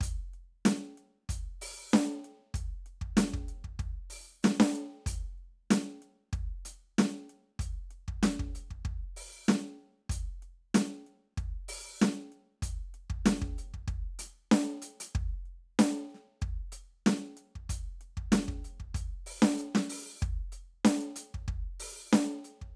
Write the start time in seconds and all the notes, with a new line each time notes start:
0.01 closed hi-hat, kick
0.34 closed hi-hat
0.66 closed hi-hat, snare
0.98 closed hi-hat
1.29 closed hi-hat, kick
1.62 open hi-hat
1.93 snare, hi-hat pedal
2.25 closed hi-hat
2.54 kick, closed hi-hat
2.86 closed hi-hat
3.02 kick
3.17 closed hi-hat, snare
3.34 kick
3.49 closed hi-hat
3.65 kick
3.80 kick, closed hi-hat
4.10 open hi-hat
4.43 closed hi-hat, snare, hi-hat pedal
4.60 snare
4.75 closed hi-hat
5.07 closed hi-hat, kick
5.38 closed hi-hat
5.71 closed hi-hat, snare
6.02 closed hi-hat
6.33 kick, closed hi-hat
6.66 open hi-hat
6.99 open hi-hat, snare, hi-hat pedal
7.30 closed hi-hat
7.60 closed hi-hat, kick
7.91 closed hi-hat
8.08 kick
8.23 closed hi-hat, snare
8.40 kick
8.55 closed hi-hat
8.71 kick
8.85 kick
9.17 open hi-hat
9.49 snare, hi-hat pedal
10.10 closed hi-hat, kick
10.43 closed hi-hat
10.75 closed hi-hat, snare
11.07 closed hi-hat
11.38 kick, closed hi-hat
11.69 open hi-hat
12.02 snare, hi-hat pedal
12.32 closed hi-hat
12.63 closed hi-hat, kick
12.94 closed hi-hat
13.10 kick
13.26 closed hi-hat, snare
13.42 kick
13.59 closed hi-hat
13.74 kick
13.88 kick, closed hi-hat
14.19 open hi-hat
14.52 snare, hi-hat pedal
14.82 closed hi-hat
15.01 closed hi-hat
15.15 kick
15.46 closed hi-hat
15.79 closed hi-hat, snare
16.11 snare, closed hi-hat
16.42 kick, closed hi-hat
16.73 open hi-hat
17.07 open hi-hat, snare, hi-hat pedal
17.37 closed hi-hat
17.56 kick
17.70 closed hi-hat, kick
18.01 closed hi-hat
18.17 kick
18.32 closed hi-hat, snare
18.48 kick
18.65 closed hi-hat
18.80 kick
18.95 closed hi-hat, kick
19.27 open hi-hat
19.43 snare
19.58 hi-hat pedal
19.75 snare
19.90 open hi-hat
20.21 kick, closed hi-hat, hi-hat pedal
20.53 closed hi-hat
20.85 closed hi-hat, snare
21.01 closed hi-hat
21.16 closed hi-hat
21.35 kick
21.48 kick
21.80 open hi-hat
22.12 closed hi-hat, snare, hi-hat pedal
22.45 closed hi-hat
22.62 kick